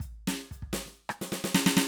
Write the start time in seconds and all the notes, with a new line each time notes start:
0.05 closed hi-hat, kick
0.27 closed hi-hat, snare
0.51 closed hi-hat, kick
0.62 kick
0.73 open hi-hat, snare
0.86 snare
0.94 hi-hat pedal
1.09 cross-stick
1.21 snare
1.32 snare
1.44 snare
1.55 snare
1.66 snare
1.77 snare